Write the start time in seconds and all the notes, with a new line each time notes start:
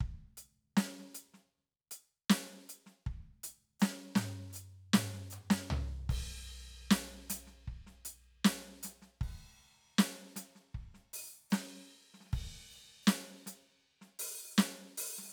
0.01 kick
0.38 closed hi-hat
0.77 snare
1.00 snare
1.15 closed hi-hat
1.34 snare
1.92 closed hi-hat
2.30 snare
2.54 snare
2.70 closed hi-hat
2.87 snare
3.07 kick, closed hi-hat
3.44 open hi-hat
3.80 snare, hi-hat pedal
4.16 snare, mid tom
4.50 snare, hi-hat pedal
4.56 closed hi-hat
4.94 snare, mid tom
5.14 snare
5.31 hi-hat pedal, mid tom
5.51 snare
5.71 floor tom
6.10 kick, crash
6.48 closed hi-hat
6.91 snare
7.30 closed hi-hat, snare
7.47 snare
7.68 kick
7.87 snare
8.05 closed hi-hat
8.45 snare
8.83 closed hi-hat, snare
9.02 snare
9.21 kick, crash
9.59 closed hi-hat
9.99 snare
10.36 closed hi-hat, snare
10.56 snare
10.73 kick, closed hi-hat
10.95 snare
11.14 open hi-hat
11.51 snare, hi-hat pedal, crash
12.14 snare
12.21 snare
12.26 snare
12.30 kick, snare, ride
12.35 snare
12.71 open hi-hat
13.03 hi-hat pedal
13.08 snare
13.47 closed hi-hat, snare
14.02 snare
14.08 snare
14.20 open hi-hat
14.58 snare, hi-hat pedal
14.79 snare
14.98 open hi-hat
15.19 snare
15.24 snare
15.29 snare